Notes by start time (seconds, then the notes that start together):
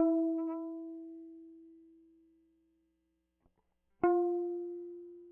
0.00 E4
4.04 F4